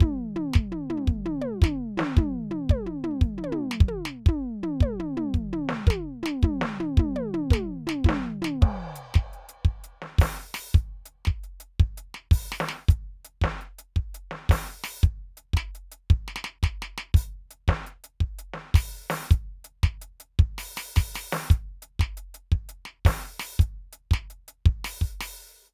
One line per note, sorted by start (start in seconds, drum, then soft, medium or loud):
0.01 kick loud
0.01 floor tom loud
0.01 hi-hat pedal medium
0.36 floor tom loud
0.54 kick loud
0.54 snare loud
0.72 floor tom loud
0.90 floor tom loud
0.97 floor tom medium
1.08 kick loud
1.08 hi-hat pedal medium
1.25 floor tom loud
1.42 high tom loud
1.62 kick loud
1.62 snare loud
1.62 floor tom loud
1.97 snare loud
1.97 floor tom loud
2.17 kick loud
2.17 hi-hat pedal medium
2.17 floor tom loud
2.51 floor tom loud
2.70 kick loud
2.70 high tom loud
2.86 floor tom medium
3.04 floor tom loud
3.10 floor tom soft
3.22 kick loud
3.22 hi-hat pedal medium
3.38 floor tom medium
3.44 high tom loud
3.52 floor tom loud
3.72 snare loud
3.81 kick loud
3.88 mid tom loud
4.06 snare loud
4.26 kick loud
4.26 floor tom loud
4.26 hi-hat pedal medium
4.63 floor tom loud
4.81 kick loud
4.81 high tom loud
4.99 floor tom loud
5.17 floor tom loud
5.34 kick medium
5.34 hi-hat pedal medium
5.53 floor tom loud
5.69 snare loud
5.87 kick loud
5.87 snare loud
5.87 mid tom loud
6.23 snare loud
6.23 floor tom loud
6.42 kick loud
6.42 floor tom loud
6.42 hi-hat pedal medium
6.62 snare loud
6.80 floor tom loud
6.98 kick loud
6.98 floor tom loud
7.16 high tom loud
7.34 floor tom loud
7.51 kick loud
7.51 snare loud
7.51 hi-hat pedal soft
7.51 mid tom loud
7.87 snare loud
7.87 floor tom loud
8.05 kick loud
8.05 hi-hat pedal soft
8.05 floor tom loud
8.09 snare loud
8.42 snare loud
8.42 floor tom loud
8.62 kick loud
8.62 hi-hat pedal soft
8.62 crash loud
8.96 closed hi-hat loud
9.15 kick loud
9.15 snare loud
9.33 closed hi-hat medium
9.49 closed hi-hat loud
9.65 kick loud
9.84 closed hi-hat loud
10.02 snare medium
10.19 open hi-hat loud
10.19 kick loud
10.19 snare loud
10.55 open hi-hat loud
10.55 snare loud
10.73 kick loud
10.73 hi-hat pedal soft
10.78 closed hi-hat medium
11.06 closed hi-hat loud
11.25 kick loud
11.25 snare loud
11.44 closed hi-hat medium
11.60 closed hi-hat loud
11.80 kick loud
11.98 closed hi-hat loud
12.15 snare medium
12.32 open hi-hat loud
12.32 kick loud
12.52 snare loud
12.61 snare loud
12.69 snare loud
12.88 closed hi-hat loud
12.88 kick loud
12.88 hi-hat pedal medium
13.25 closed hi-hat loud
13.42 kick loud
13.42 snare loud
13.61 closed hi-hat medium
13.79 closed hi-hat loud
13.96 kick medium
14.15 closed hi-hat loud
14.31 snare medium
14.50 open hi-hat loud
14.50 kick loud
14.50 snare loud
14.84 open hi-hat loud
14.84 snare loud
15.03 kick loud
15.03 hi-hat pedal medium
15.37 closed hi-hat loud
15.54 kick loud
15.54 snare medium
15.54 snare loud
15.75 closed hi-hat loud
15.92 closed hi-hat loud
16.10 kick loud
16.28 snare medium
16.36 snare loud
16.45 snare loud
16.63 kick loud
16.63 snare loud
16.82 snare loud
16.98 snare loud
17.15 open hi-hat loud
17.15 kick loud
17.51 closed hi-hat loud
17.68 kick loud
17.68 snare loud
17.87 closed hi-hat medium
18.04 closed hi-hat loud
18.21 kick medium
18.39 closed hi-hat loud
18.54 snare medium
18.75 open hi-hat loud
18.75 kick loud
18.75 snare loud
19.10 open hi-hat loud
19.10 snare loud
19.28 closed hi-hat loud
19.28 kick loud
19.28 hi-hat pedal soft
19.65 closed hi-hat loud
19.84 kick loud
19.84 snare loud
20.02 closed hi-hat loud
20.20 closed hi-hat loud
20.39 kick loud
20.58 open hi-hat loud
20.58 snare loud
20.77 open hi-hat loud
20.77 snare loud
20.96 open hi-hat loud
20.96 kick loud
20.96 snare loud
21.15 open hi-hat loud
21.15 snare loud
21.32 open hi-hat loud
21.32 snare loud
21.49 closed hi-hat loud
21.49 kick loud
21.49 hi-hat pedal soft
21.83 closed hi-hat loud
22.00 kick loud
22.00 snare loud
22.18 closed hi-hat loud
22.35 closed hi-hat loud
22.52 kick loud
22.69 closed hi-hat loud
22.86 snare medium
23.05 open hi-hat loud
23.05 kick loud
23.05 snare loud
23.40 open hi-hat loud
23.40 snare loud
23.57 kick loud
23.57 hi-hat pedal soft
23.61 closed hi-hat loud
23.93 closed hi-hat loud
24.11 kick loud
24.11 snare loud
24.30 closed hi-hat loud
24.48 closed hi-hat loud
24.66 kick loud
24.85 open hi-hat loud
24.85 snare loud
25.02 kick medium
25.21 open hi-hat loud
25.21 snare loud
25.67 hi-hat pedal soft